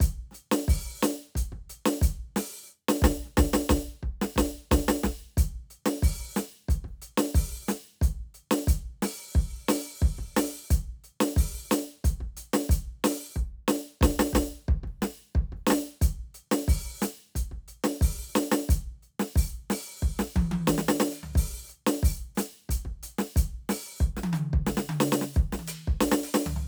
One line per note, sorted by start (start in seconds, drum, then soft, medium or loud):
0.01 closed hi-hat loud
0.01 kick loud
0.32 closed hi-hat medium
0.32 snare soft
0.52 snare loud
0.69 open hi-hat loud
0.69 kick loud
1.02 closed hi-hat loud
1.02 snare loud
1.02 hi-hat pedal soft
1.36 closed hi-hat loud
1.36 kick loud
1.53 kick medium
1.70 closed hi-hat medium
1.86 snare loud
2.02 closed hi-hat loud
2.02 kick loud
2.37 open hi-hat loud
2.37 snare loud
2.68 hi-hat pedal soft
2.89 snare loud
3.03 kick loud
3.03 snare loud
3.23 cross-stick soft
3.23 snare soft
3.38 kick loud
3.38 snare loud
3.54 snare loud
3.70 kick loud
3.70 snare loud
4.03 kick medium
4.03 snare soft
4.22 snare loud
4.37 kick medium
4.37 snare loud
4.72 kick loud
4.72 snare loud
4.89 snare loud
5.04 kick medium
5.04 snare loud
5.38 closed hi-hat loud
5.38 kick loud
5.71 closed hi-hat medium
5.86 snare loud
6.03 open hi-hat loud
6.03 kick loud
6.37 open hi-hat loud
6.37 snare loud
6.37 hi-hat pedal medium
6.69 closed hi-hat medium
6.69 kick loud
6.85 kick medium
6.89 crash soft
6.89 ride soft
7.02 closed hi-hat medium
7.18 snare loud
7.35 open hi-hat loud
7.35 kick loud
7.68 closed hi-hat loud
7.68 snare loud
7.68 hi-hat pedal medium
8.02 closed hi-hat medium
8.02 kick loud
8.35 closed hi-hat medium
8.52 snare loud
8.68 closed hi-hat loud
8.68 kick loud
9.03 open hi-hat loud
9.03 snare loud
9.36 kick loud
9.69 open hi-hat loud
9.69 snare loud
10.02 open hi-hat soft
10.02 kick loud
10.19 kick medium
10.19 cross-stick soft
10.23 crash soft
10.23 ride soft
10.37 open hi-hat loud
10.37 snare loud
10.68 closed hi-hat loud
10.68 kick loud
10.68 hi-hat pedal soft
11.04 closed hi-hat medium
11.21 snare loud
11.37 open hi-hat loud
11.37 kick loud
11.70 closed hi-hat loud
11.70 snare loud
11.70 hi-hat pedal soft
12.05 closed hi-hat loud
12.05 kick loud
12.21 kick medium
12.37 closed hi-hat medium
12.54 snare loud
12.70 open hi-hat loud
12.70 kick loud
13.05 open hi-hat loud
13.05 snare loud
13.36 kick loud
13.36 hi-hat pedal soft
13.69 snare loud
14.02 kick loud
14.02 snare loud
14.20 snare loud
14.34 kick loud
14.34 snare loud
14.69 kick loud
14.84 kick medium
14.84 snare soft
14.88 crash soft
14.88 high tom soft
14.88 ride soft
15.03 snare loud
15.36 kick loud
15.53 kick medium
15.57 snare soft
15.57 crash soft
15.57 ride soft
15.67 snare loud
15.71 snare loud
16.02 closed hi-hat loud
16.02 kick loud
16.35 closed hi-hat medium
16.52 snare loud
16.68 open hi-hat loud
16.68 kick loud
17.02 closed hi-hat loud
17.02 snare loud
17.02 hi-hat pedal medium
17.36 closed hi-hat loud
17.36 kick medium
17.52 kick medium
17.68 closed hi-hat medium
17.84 snare loud
18.02 open hi-hat loud
18.02 kick loud
18.36 snare loud
18.36 hi-hat pedal medium
18.52 snare loud
18.70 closed hi-hat loud
18.70 kick loud
19.03 closed hi-hat soft
19.20 snare loud
19.36 open hi-hat loud
19.36 kick loud
19.71 open hi-hat loud
19.71 snare loud
20.03 kick loud
20.20 snare loud
20.36 kick loud
20.36 high tom loud
20.52 high tom loud
20.68 kick medium
20.68 snare loud
20.79 snare loud
20.89 snare loud
21.01 snare loud
21.12 closed hi-hat medium
21.24 floor tom medium
21.35 open hi-hat loud
21.35 kick loud
21.35 hi-hat pedal soft
21.67 closed hi-hat medium
21.67 hi-hat pedal soft
21.87 snare loud
22.03 open hi-hat loud
22.03 kick loud
22.36 closed hi-hat loud
22.36 snare loud
22.36 hi-hat pedal soft
22.70 closed hi-hat loud
22.70 kick loud
22.86 kick medium
23.03 closed hi-hat loud
23.19 snare loud
23.37 closed hi-hat loud
23.37 kick loud
23.70 open hi-hat loud
23.70 snare loud
24.01 kick loud
24.01 hi-hat pedal soft
24.17 snare medium
24.24 high tom loud
24.34 hi-hat pedal medium
24.34 mid tom loud
24.54 kick loud
24.67 snare loud
24.67 hi-hat pedal medium
24.78 snare loud
24.90 mid tom loud
25.01 snare loud
25.13 snare loud
25.22 snare loud
25.34 kick loud
25.34 hi-hat pedal medium
25.53 snare loud
25.60 high tom medium
25.67 closed hi-hat loud
25.67 hi-hat pedal medium
25.88 kick loud
26.01 snare loud
26.01 hi-hat pedal medium
26.12 snare loud
26.24 closed hi-hat medium
26.35 snare loud
26.47 floor tom loud